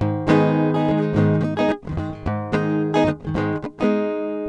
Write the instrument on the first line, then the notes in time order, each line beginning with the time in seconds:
acoustic guitar
0.00 G#2 D#3
0.29 D#3 G#3 B3 D#4 G#4
0.76 B3 D#4 G#4
0.90 D#3 G#3
1.15 G#2 D#3 G#3
1.20 B3
1.42 G#3 B3 D#4
1.58 B3 D#4 G#4
1.70 G#3
1.89 G#3
2.00 D#3 G#3
2.14 G#3
2.27 G#2
2.54 D#3 G#3 B3 D#4 G#4
2.95 B3 D#4 G#4
3.10 G#3
3.26 D#3 G#3
3.36 G#2 D#3 G#3 B3
3.42 D#4
3.65 G#3
3.82 G#3 B3 D#4